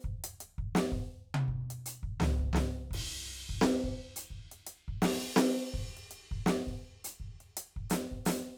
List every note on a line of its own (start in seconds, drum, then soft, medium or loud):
0.01 kick medium
0.01 hi-hat pedal soft
0.24 closed hi-hat loud
0.41 closed hi-hat medium
0.58 kick medium
0.75 snare loud
0.92 kick medium
1.35 high tom loud
1.48 kick soft
1.71 closed hi-hat medium
1.86 closed hi-hat loud
2.03 kick soft
2.20 snare loud
2.20 floor tom loud
2.40 kick soft
2.53 snare loud
2.53 floor tom loud
2.91 kick medium
2.91 ride loud
3.50 kick soft
3.62 snare loud
3.84 kick soft
4.17 closed hi-hat loud
4.31 kick soft
4.52 closed hi-hat medium
4.67 closed hi-hat medium
4.88 kick soft
5.02 snare loud
5.02 crash loud
5.37 snare loud
5.37 hi-hat pedal medium
5.74 kick medium
5.97 closed hi-hat soft
6.11 closed hi-hat medium
6.32 kick medium
6.47 snare loud
6.67 kick soft
7.05 closed hi-hat loud
7.20 kick soft
7.41 closed hi-hat soft
7.57 closed hi-hat loud
7.77 kick soft
7.90 open hi-hat loud
7.90 snare loud
8.12 kick soft
8.26 open hi-hat loud
8.26 snare loud